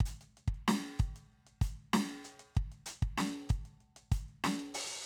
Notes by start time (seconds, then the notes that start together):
0.04 closed hi-hat, kick
0.21 closed hi-hat
0.37 closed hi-hat
0.48 kick
0.54 closed hi-hat
0.68 snare
0.83 closed hi-hat
0.99 closed hi-hat, kick
1.16 closed hi-hat
1.32 closed hi-hat
1.47 closed hi-hat
1.61 closed hi-hat, kick
1.77 closed hi-hat
1.93 snare
2.09 closed hi-hat
2.24 closed hi-hat
2.39 closed hi-hat
2.55 kick, closed hi-hat
2.72 closed hi-hat
2.86 closed hi-hat
3.02 kick, closed hi-hat
3.18 snare
3.33 closed hi-hat
3.49 closed hi-hat, kick
3.65 closed hi-hat
3.80 closed hi-hat
3.96 closed hi-hat
4.12 closed hi-hat, kick
4.28 closed hi-hat
4.44 snare
4.59 closed hi-hat
4.74 open hi-hat